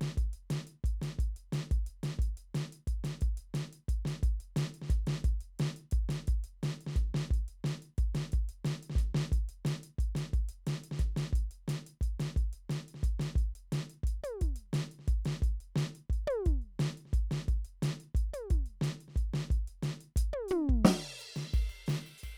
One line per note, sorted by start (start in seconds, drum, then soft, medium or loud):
0.01 snare medium
0.01 closed hi-hat soft
0.17 kick soft
0.17 closed hi-hat soft
0.33 closed hi-hat soft
0.50 snare medium
0.50 closed hi-hat medium
0.67 closed hi-hat soft
0.84 kick soft
0.84 closed hi-hat soft
1.02 snare medium
1.02 closed hi-hat soft
1.19 kick soft
1.19 closed hi-hat soft
1.36 closed hi-hat soft
1.52 snare medium
1.52 closed hi-hat medium
1.71 kick medium
1.71 closed hi-hat soft
1.86 closed hi-hat soft
2.03 snare medium
2.03 closed hi-hat medium
2.19 kick soft
2.19 closed hi-hat soft
2.37 closed hi-hat soft
2.55 snare medium
2.55 closed hi-hat medium
2.72 closed hi-hat soft
2.87 kick soft
2.87 closed hi-hat medium
3.04 snare medium
3.04 closed hi-hat medium
3.21 kick medium
3.21 closed hi-hat soft
3.37 closed hi-hat soft
3.54 snare medium
3.54 closed hi-hat medium
3.73 closed hi-hat soft
3.88 kick soft
3.88 closed hi-hat medium
4.05 snare medium
4.05 closed hi-hat soft
4.23 kick medium
4.23 closed hi-hat soft
4.40 closed hi-hat soft
4.56 snare medium
4.56 closed hi-hat medium
4.74 closed hi-hat soft
4.82 snare soft
4.90 kick medium
4.90 closed hi-hat medium
5.07 snare medium
5.07 closed hi-hat soft
5.24 kick medium
5.24 closed hi-hat soft
5.41 closed hi-hat soft
5.59 snare medium
5.59 closed hi-hat medium
5.76 closed hi-hat soft
5.91 kick medium
5.91 closed hi-hat medium
6.09 snare medium
6.09 closed hi-hat medium
6.27 kick medium
6.27 closed hi-hat medium
6.44 closed hi-hat soft
6.63 snare medium
6.63 closed hi-hat soft
6.81 closed hi-hat soft
6.87 snare medium
6.96 kick medium
6.96 closed hi-hat soft
7.14 snare medium
7.14 closed hi-hat soft
7.31 kick medium
7.31 closed hi-hat soft
7.48 closed hi-hat soft
7.64 snare medium
7.64 closed hi-hat soft
7.82 closed hi-hat soft
7.98 kick medium
7.98 closed hi-hat soft
8.15 snare medium
8.15 closed hi-hat soft
8.32 kick medium
8.32 closed hi-hat soft
8.49 closed hi-hat soft
8.65 snare medium
8.65 closed hi-hat medium
8.83 closed hi-hat soft
8.90 snare soft
8.95 kick medium
8.95 closed hi-hat medium
9.15 snare medium
9.15 closed hi-hat soft
9.32 kick medium
9.32 closed hi-hat medium
9.49 closed hi-hat soft
9.65 snare medium
9.65 closed hi-hat medium
9.83 closed hi-hat medium
9.99 kick soft
9.99 closed hi-hat soft
10.15 snare medium
10.15 closed hi-hat medium
10.33 kick medium
10.33 closed hi-hat soft
10.49 closed hi-hat soft
10.67 snare medium
10.67 closed hi-hat medium
10.84 closed hi-hat soft
10.91 snare medium
10.99 kick soft
10.99 closed hi-hat medium
11.17 snare medium
11.17 closed hi-hat soft
11.33 kick medium
11.33 closed hi-hat medium
11.51 closed hi-hat soft
11.68 snare medium
11.68 closed hi-hat medium
11.86 closed hi-hat soft
12.01 kick soft
12.01 closed hi-hat medium
12.20 snare medium
12.20 closed hi-hat medium
12.36 kick medium
12.36 closed hi-hat soft
12.53 closed hi-hat soft
12.70 snare medium
12.70 closed hi-hat medium
12.88 closed hi-hat soft
12.94 snare soft
13.03 kick medium
13.03 closed hi-hat medium
13.20 snare medium
13.20 closed hi-hat soft
13.35 kick medium
13.35 closed hi-hat soft
13.55 closed hi-hat soft
13.72 closed hi-hat medium
13.72 snare medium
13.90 closed hi-hat soft
14.03 kick soft
14.03 closed hi-hat medium
14.23 closed hi-hat medium
14.23 high tom medium
14.41 kick soft
14.41 closed hi-hat medium
14.56 closed hi-hat soft
14.73 closed hi-hat medium
14.73 snare medium
14.91 closed hi-hat soft
14.99 snare soft
15.08 closed hi-hat soft
15.08 kick medium
15.25 snare medium
15.25 closed hi-hat soft
15.42 kick medium
15.42 closed hi-hat soft
15.60 closed hi-hat soft
15.76 snare medium
15.76 closed hi-hat medium
15.95 closed hi-hat soft
16.10 kick soft
16.10 closed hi-hat soft
16.27 closed hi-hat soft
16.27 high tom loud
16.46 kick medium
16.46 closed hi-hat soft
16.62 closed hi-hat soft
16.79 snare medium
16.79 closed hi-hat medium
16.97 closed hi-hat soft
17.05 snare soft
17.13 kick medium
17.13 closed hi-hat soft
17.31 snare medium
17.31 closed hi-hat soft
17.48 kick medium
17.48 closed hi-hat soft
17.65 closed hi-hat soft
17.82 closed hi-hat medium
17.82 snare medium
18.00 closed hi-hat soft
18.15 kick medium
18.15 closed hi-hat soft
18.33 closed hi-hat medium
18.33 high tom medium
18.50 kick medium
18.50 closed hi-hat soft
18.66 closed hi-hat soft
18.81 closed hi-hat medium
18.81 snare medium
19.01 closed hi-hat soft
19.08 snare soft
19.16 kick soft
19.16 closed hi-hat soft
19.34 snare medium
19.34 closed hi-hat soft
19.50 kick medium
19.50 closed hi-hat soft
19.67 closed hi-hat soft
19.83 closed hi-hat medium
19.83 snare medium
20.01 closed hi-hat soft
20.16 kick medium
20.16 closed hi-hat loud
20.33 high tom loud
20.48 floor tom loud
20.48 hi-hat pedal medium
20.69 kick medium
20.85 snare loud
20.85 crash medium
21.19 hi-hat pedal medium
21.19 ride soft
21.36 snare medium
21.36 ride soft
21.54 kick medium
21.54 ride soft
21.69 ride soft
21.86 snare medium
21.86 hi-hat pedal medium
21.86 ride medium
22.06 ride soft
22.18 hi-hat pedal medium
22.23 kick soft
22.23 ride soft